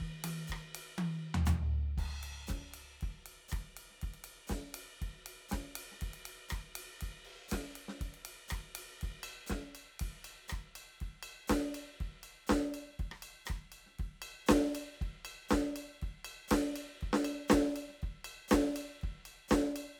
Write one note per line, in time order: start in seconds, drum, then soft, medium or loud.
0.01 kick soft
0.24 high tom medium
0.24 ride loud
0.47 kick soft
0.47 hi-hat pedal medium
0.52 cross-stick medium
0.75 ride loud
0.98 high tom loud
1.34 floor tom loud
1.46 floor tom loud
1.46 hi-hat pedal loud
1.98 kick medium
1.98 crash medium
2.23 ride medium
2.47 kick medium
2.47 snare medium
2.47 hi-hat pedal medium
2.47 ride medium
2.74 ride medium
3.01 kick medium
3.01 ride soft
3.26 ride medium
3.49 cross-stick medium
3.49 hi-hat pedal medium
3.53 kick medium
3.53 ride medium
3.77 ride medium
3.91 snare soft
4.02 kick soft
4.02 ride medium
4.14 ride soft
4.24 ride medium
4.47 kick soft
4.47 snare medium
4.47 hi-hat pedal medium
4.47 ride medium
4.74 ride loud
5.02 kick soft
5.02 ride medium
5.26 ride medium
5.49 snare medium
5.49 hi-hat pedal medium
5.49 ride medium
5.53 kick soft
5.76 ride loud
5.92 snare soft
6.01 kick soft
6.01 ride medium
6.14 ride medium
6.26 ride loud
6.49 kick soft
6.49 cross-stick medium
6.49 hi-hat pedal medium
6.49 ride medium
6.76 ride loud
7.01 kick soft
7.01 ride medium
7.25 ride soft
7.49 kick soft
7.49 snare medium
7.49 hi-hat pedal medium
7.49 ride loud
7.76 ride medium
7.88 snare medium
8.01 kick soft
8.01 ride medium
8.14 ride soft
8.25 ride loud
8.48 kick soft
8.48 cross-stick medium
8.48 hi-hat pedal medium
8.48 ride medium
8.75 ride loud
9.01 kick soft
9.01 ride medium
9.23 ride bell loud
9.47 snare medium
9.47 hi-hat pedal loud
9.47 ride soft
9.51 kick soft
9.75 ride bell medium
10.00 kick medium
10.00 ride loud
10.25 ride bell medium
10.48 cross-stick medium
10.48 hi-hat pedal medium
10.48 ride soft
10.53 kick soft
10.76 ride bell medium
11.01 kick soft
11.01 ride soft
11.23 ride bell loud
11.48 kick soft
11.48 snare medium
11.48 hi-hat pedal loud
11.48 ride loud
11.75 ride bell medium
12.01 kick soft
12.01 ride soft
12.23 ride bell medium
12.47 snare loud
12.47 hi-hat pedal medium
12.47 ride soft
12.51 kick soft
12.74 ride bell medium
12.89 snare soft
12.99 kick medium
12.99 ride soft
13.12 cross-stick medium
13.22 ride bell medium
13.46 cross-stick medium
13.46 hi-hat pedal medium
13.46 ride soft
13.50 kick medium
13.72 ride bell medium
13.86 snare soft
13.99 kick medium
13.99 ride soft
14.22 ride bell loud
14.46 snare loud
14.46 hi-hat pedal medium
14.46 ride medium
14.51 kick medium
14.75 ride bell loud
15.01 kick medium
15.01 ride soft
15.25 ride bell loud
15.49 kick medium
15.49 snare loud
15.49 hi-hat pedal medium
15.49 ride soft
15.76 ride bell medium
16.02 kick soft
16.02 ride soft
16.25 ride bell loud
16.48 kick soft
16.48 snare loud
16.48 hi-hat pedal medium
16.48 ride loud
16.76 ride bell medium
17.01 kick soft
17.01 ride soft
17.13 snare medium
17.25 ride bell loud
17.48 snare loud
17.48 hi-hat pedal medium
17.48 ride medium
17.53 kick soft
17.76 ride bell medium
17.89 snare soft
18.02 kick medium
18.02 ride soft
18.25 ride bell loud
18.48 snare loud
18.48 hi-hat pedal loud
18.48 ride medium
18.53 kick medium
18.76 ride bell loud
19.02 kick medium
19.02 ride soft
19.26 ride bell medium
19.48 kick soft
19.48 snare loud
19.48 hi-hat pedal medium
19.48 ride soft
19.76 ride bell loud